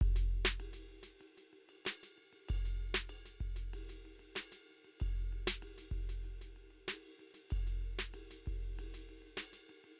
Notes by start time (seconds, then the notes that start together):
0.01 kick, hi-hat pedal, ride
0.16 snare
0.31 ride
0.45 snare
0.55 hi-hat pedal
0.60 ride
0.73 snare
0.89 ride
1.03 snare
1.19 hi-hat pedal, ride
1.37 snare
1.53 ride
1.69 ride bell
1.85 snare, hi-hat pedal, ride bell
2.03 snare
2.18 ride
2.33 ride
2.48 kick, hi-hat pedal, ride bell
2.65 snare
2.80 ride
2.94 snare
3.07 hi-hat pedal, ride bell
3.25 snare
3.40 kick, ride
3.56 snare
3.73 hi-hat pedal, ride
3.89 snare
4.05 ride
4.19 ride
4.35 snare, hi-hat pedal, ride bell
4.52 snare
4.71 ride
4.84 ride
4.99 kick, hi-hat pedal, ride bell
5.18 snare
5.32 ride
5.47 snare
5.57 hi-hat pedal
5.62 ride
5.78 snare
5.91 kick, ride
6.09 snare
6.23 floor tom, hi-hat pedal, ride
6.41 snare
6.56 ride
6.70 ride bell
6.88 snare, hi-hat pedal, ride
7.19 ride
7.34 snare
7.49 kick, hi-hat pedal, ride bell
7.67 snare
7.82 ride
7.99 snare
8.12 hi-hat pedal, ride
8.31 snare
8.46 kick, ride
8.75 hi-hat pedal, ride
8.94 snare
9.09 ride
9.22 ride
9.37 snare, hi-hat pedal, ride bell
9.53 snare
9.69 ride
9.84 ride